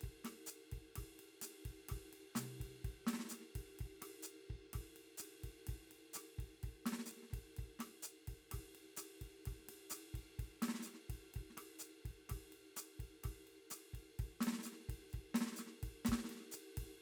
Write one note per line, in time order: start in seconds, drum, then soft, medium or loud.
0.01 kick soft
0.01 ride soft
0.08 kick soft
0.24 cross-stick soft
0.24 snare soft
0.24 ride medium
0.46 hi-hat pedal medium
0.46 ride soft
0.72 kick soft
0.72 ride soft
0.77 kick soft
0.96 kick soft
0.96 cross-stick soft
0.96 ride medium
1.03 kick soft
1.19 ride soft
1.41 snare soft
1.41 hi-hat pedal medium
1.41 ride medium
1.65 kick soft
1.65 ride soft
1.70 kick soft
1.88 kick soft
1.88 cross-stick soft
1.88 snare soft
1.88 ride medium
1.97 kick soft
2.13 ride soft
2.35 snare medium
2.35 hi-hat pedal medium
2.35 mid tom soft
2.35 ride medium
2.60 kick soft
2.60 ride soft
2.65 kick soft
2.84 kick soft
2.84 ride soft
2.90 kick soft
3.07 snare medium
3.07 ride medium
3.13 snare soft
3.19 snare soft
3.25 snare soft
3.29 snare soft
3.29 hi-hat pedal medium
3.29 ride soft
3.40 snare soft
3.47 snare soft
3.55 kick soft
3.55 ride medium
3.60 kick soft
3.79 kick soft
3.79 ride soft
3.85 kick soft
4.02 cross-stick soft
4.02 ride medium
4.23 hi-hat pedal medium
4.49 kick soft
4.49 ride soft
4.55 kick soft
4.73 kick soft
4.73 cross-stick soft
4.73 ride medium
4.80 kick soft
4.96 ride soft
5.17 cross-stick soft
5.17 hi-hat pedal medium
5.17 ride medium
5.44 kick soft
5.44 ride soft
5.66 kick soft
5.66 snare soft
5.66 ride medium
5.74 kick soft
5.91 ride soft
6.13 cross-stick soft
6.13 hi-hat pedal medium
6.13 ride medium
6.38 kick soft
6.38 ride soft
6.44 kick soft
6.63 kick soft
6.63 ride soft
6.69 kick soft
6.86 snare medium
6.86 ride medium
6.92 snare soft
6.99 snare soft
7.06 snare soft
7.06 hi-hat pedal medium
7.11 snare soft
7.11 ride soft
7.16 snare soft
7.22 snare soft
7.30 kick soft
7.30 snare soft
7.30 ride soft
7.38 kick soft
7.57 kick soft
7.57 ride soft
7.64 kick soft
7.79 cross-stick medium
7.79 snare soft
7.79 ride medium
8.02 hi-hat pedal medium
8.02 ride soft
8.27 kick soft
8.27 ride soft
8.33 kick soft
8.51 kick soft
8.51 cross-stick soft
8.51 snare soft
8.51 hi-hat pedal soft
8.51 ride medium
8.59 kick soft
8.75 ride soft
8.84 snare soft
8.97 cross-stick soft
8.97 snare soft
8.97 hi-hat pedal medium
8.97 ride medium
9.21 kick soft
9.21 ride soft
9.45 kick soft
9.45 cross-stick soft
9.45 ride soft
9.52 kick soft
9.58 snare soft
9.67 snare soft
9.67 ride medium
9.90 cross-stick soft
9.90 hi-hat pedal medium
9.90 ride medium
10.14 kick soft
10.14 ride soft
10.19 kick soft
10.39 kick soft
10.39 ride soft
10.44 kick soft
10.62 snare medium
10.62 ride medium
10.68 snare medium
10.74 snare soft
10.80 snare soft
10.80 hi-hat pedal medium
10.86 snare soft
10.86 ride soft
10.94 snare soft
11.09 kick soft
11.09 ride soft
11.15 kick soft
11.34 kick soft
11.34 ride soft
11.41 kick soft
11.50 snare soft
11.57 cross-stick soft
11.57 ride medium
11.79 hi-hat pedal medium
11.79 ride soft
12.05 kick soft
12.05 ride soft
12.10 kick soft
12.29 kick soft
12.29 cross-stick soft
12.29 ride medium
12.36 kick soft
12.52 ride soft
12.76 cross-stick soft
12.76 snare soft
12.76 hi-hat pedal medium
12.76 ride medium
12.99 kick soft
12.99 ride soft
13.05 kick soft
13.24 kick soft
13.24 cross-stick soft
13.24 ride medium
13.30 kick soft
13.47 ride soft
13.70 cross-stick soft
13.70 snare soft
13.70 hi-hat pedal medium
13.70 ride medium
13.94 kick soft
13.94 ride soft
14.19 kick soft
14.19 ride soft
14.25 kick soft
14.41 snare medium
14.41 ride medium
14.47 snare medium
14.52 snare soft
14.59 snare soft
14.63 snare soft
14.63 hi-hat pedal medium
14.63 ride soft
14.72 snare soft
14.80 snare soft
14.86 kick soft
14.86 snare soft
14.86 ride soft
14.90 kick soft
14.90 snare soft
14.94 snare soft
14.97 snare soft
15.01 snare soft
15.10 hi-hat pedal soft
15.10 ride soft
15.14 kick soft
15.19 kick soft
15.34 snare medium
15.34 ride medium
15.41 snare medium
15.46 snare soft
15.52 snare soft
15.56 snare soft
15.56 hi-hat pedal medium
15.56 ride soft
15.66 snare soft
15.71 snare soft
15.76 snare soft
15.80 kick soft
15.80 snare soft
15.80 ride soft
15.88 kick soft
16.05 kick soft
16.05 snare medium
16.05 ride medium
16.12 kick soft
16.12 snare medium
16.18 snare soft
16.24 snare soft
16.29 snare soft
16.29 ride soft
16.35 snare soft
16.40 snare soft
16.46 snare soft
16.49 snare soft
16.49 hi-hat pedal medium
16.53 snare soft
16.53 ride medium
16.77 kick soft
16.77 ride medium
16.83 kick soft
16.83 snare soft